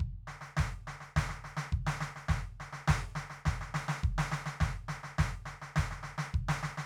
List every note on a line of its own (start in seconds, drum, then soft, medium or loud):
0.00 kick medium
0.27 snare soft
0.41 snare soft
0.57 kick medium
0.57 snare medium
0.87 snare medium
1.00 snare soft
1.16 kick medium
1.16 snare loud
1.29 snare soft
1.44 snare soft
1.57 snare medium
1.72 kick medium
1.87 snare medium
2.00 snare medium
2.16 snare soft
2.28 kick medium
2.28 snare medium
2.60 snare soft
2.73 snare medium
2.88 kick medium
2.88 snare loud
3.15 snare medium
3.30 snare soft
3.45 kick medium
3.45 snare medium
3.61 snare soft
3.74 snare medium
3.88 snare medium
4.03 kick medium
4.18 snare medium
4.32 snare medium
4.46 snare medium
4.60 kick medium
4.60 snare medium
4.88 snare medium
5.03 snare soft
5.18 kick medium
5.18 snare medium
5.45 snare medium
5.62 snare soft
5.76 kick medium
5.76 snare medium
5.91 snare soft
6.03 snare medium
6.18 snare medium
6.34 kick medium
6.48 snare loud
6.48 open hi-hat soft
6.63 snare medium
6.77 snare medium